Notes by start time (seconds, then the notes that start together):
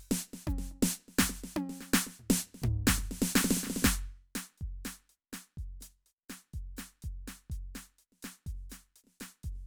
0.01 open hi-hat
0.12 snare
0.24 open hi-hat
0.34 snare
0.48 kick, hi-hat pedal, high tom
0.54 kick
0.58 kick, snare
0.72 high tom
0.83 snare
1.09 snare
1.17 snare, hi-hat pedal
1.21 kick
1.30 snare
1.44 snare
1.57 hi-hat pedal, high tom
1.70 snare
1.81 snare
1.94 snare
2.07 snare
2.20 floor tom
2.31 snare
2.55 snare
2.63 kick, floor tom
2.88 kick, snare
2.95 kick, snare
3.12 snare
3.22 snare
3.36 snare
3.41 snare
3.45 snare
3.51 snare
3.57 snare
3.64 snare
3.67 snare
3.70 snare
3.77 snare
3.83 snare
3.85 kick, snare, hi-hat pedal
4.36 closed hi-hat, snare
4.58 kick, closed hi-hat
4.85 open hi-hat, snare, hi-hat pedal
5.10 closed hi-hat
5.33 closed hi-hat, snare
5.58 kick, open hi-hat
5.81 closed hi-hat, snare, hi-hat pedal
6.07 closed hi-hat
6.30 closed hi-hat, snare, hi-hat pedal
6.54 open hi-hat, kick
6.77 closed hi-hat, snare, hi-hat pedal
7.03 closed hi-hat, kick
7.28 closed hi-hat, snare
7.51 closed hi-hat, kick
7.75 open hi-hat, snare, hi-hat pedal
7.99 closed hi-hat
8.13 snare
8.23 closed hi-hat, snare
8.47 closed hi-hat, kick
8.55 snare
8.70 closed hi-hat, snare, hi-hat pedal
8.96 closed hi-hat
9.04 snare
9.07 snare
9.21 closed hi-hat, snare
9.44 closed hi-hat, kick
9.53 snare
9.56 snare